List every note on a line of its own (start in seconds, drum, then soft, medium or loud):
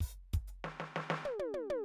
0.00 kick soft
0.00 open hi-hat medium
0.11 hi-hat pedal soft
0.33 open hi-hat medium
0.33 kick medium
0.47 hi-hat pedal medium
0.64 snare medium
0.80 snare medium
0.96 snare medium
1.10 snare medium
1.25 high tom medium
1.39 high tom medium
1.54 high tom medium
1.70 high tom loud